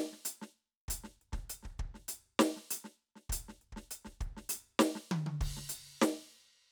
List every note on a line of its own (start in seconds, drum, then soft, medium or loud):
0.12 snare soft
0.25 closed hi-hat loud
0.42 snare soft
0.58 closed hi-hat soft
0.88 closed hi-hat loud
0.88 kick soft
1.04 snare soft
1.21 closed hi-hat soft
1.32 kick medium
1.32 snare soft
1.50 closed hi-hat medium
1.63 kick soft
1.63 snare soft
1.79 kick medium
1.79 closed hi-hat soft
1.94 snare soft
2.08 closed hi-hat loud
2.39 snare loud
2.56 snare soft
2.71 closed hi-hat loud
2.84 snare soft
3.16 snare soft
3.29 closed hi-hat loud
3.29 kick medium
3.48 snare soft
3.61 closed hi-hat soft
3.72 kick soft
3.76 snare soft
3.91 closed hi-hat medium
4.05 kick soft
4.05 snare soft
4.21 kick medium
4.21 closed hi-hat soft
4.37 snare soft
4.49 closed hi-hat loud
4.79 snare loud
4.95 snare soft
5.11 high tom loud
5.26 high tom medium
5.41 kick medium
5.41 crash medium
5.57 snare soft
5.69 closed hi-hat loud
6.02 snare loud